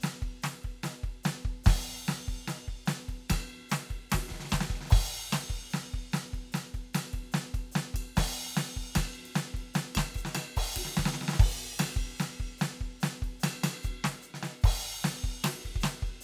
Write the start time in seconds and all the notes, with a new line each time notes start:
0.01 snare, hi-hat pedal, ride bell
0.22 kick, ride
0.42 snare, hi-hat pedal, ride bell
0.64 kick, ride
0.83 snare, hi-hat pedal, ride bell
1.03 kick, ride
1.23 snare, hi-hat pedal, ride bell
1.45 kick
1.64 kick, snare, hi-hat pedal, crash
2.05 snare, hi-hat pedal, ride bell
2.27 kick, ride
2.47 snare, hi-hat pedal, ride bell
2.67 kick, ride
2.86 snare, hi-hat pedal, ride bell
3.08 kick, ride
3.29 kick, snare, hi-hat pedal, ride bell
3.49 ride
3.69 snare, hi-hat pedal, ride bell
3.90 kick, ride
4.10 snare, hi-hat pedal, ride
4.14 kick
4.28 kick, snare
4.34 snare
4.40 snare
4.45 snare
4.49 kick, snare, hi-hat pedal
4.60 snare
4.69 kick, snare
4.75 snare
4.81 snare
4.85 snare
4.90 kick, hi-hat pedal, crash
5.31 snare, hi-hat pedal, ride bell
5.50 kick
5.70 snare, hi-hat pedal, ride bell
5.93 kick, ride bell
6.12 snare, hi-hat pedal, ride bell
6.33 kick, ride
6.52 snare, hi-hat pedal, ride bell
6.74 kick, ride bell
6.93 snare, hi-hat pedal, ride bell
7.13 kick, ride
7.32 snare, hi-hat pedal
7.54 kick, ride bell
7.65 kick
7.72 snare, hi-hat pedal
7.94 kick, ride bell
8.16 kick, snare, hi-hat pedal, crash
8.56 snare, hi-hat pedal, ride bell
8.76 kick
8.95 kick, snare, hi-hat pedal, ride bell
9.15 ride bell
9.25 ride
9.34 snare, hi-hat pedal, ride
9.54 kick, ride
9.74 snare, hi-hat pedal, ride
9.95 kick, snare, ride bell
10.15 kick, hi-hat pedal, ride bell
10.25 snare
10.35 snare, ride bell
10.55 kick, hi-hat pedal, crash
10.76 kick, ride
10.85 snare
10.94 snare, hi-hat pedal
10.99 kick
11.05 snare
11.13 snare
11.21 snare
11.28 snare
11.33 snare
11.39 kick, crash
11.78 snare, hi-hat pedal, ride bell
11.96 kick
12.18 snare, hi-hat pedal, ride bell
12.39 kick, ride bell
12.58 snare, hi-hat pedal, ride bell
12.81 kick
13.00 snare, hi-hat pedal, ride bell
13.22 kick, ride
13.40 snare, hi-hat pedal, ride bell
13.63 snare, ride bell
13.83 kick, hi-hat pedal, ride bell
14.04 kick, snare
14.22 hi-hat pedal, ride bell
14.34 snare
14.43 snare, ride
14.61 kick, hi-hat pedal, crash
15.02 snare, hi-hat pedal, ride bell
15.24 kick, ride bell
15.43 snare, hi-hat pedal, ride
15.63 kick, ride bell
15.76 kick
15.80 snare, hi-hat pedal, ride bell
16.02 kick
16.06 ride bell
16.21 hi-hat pedal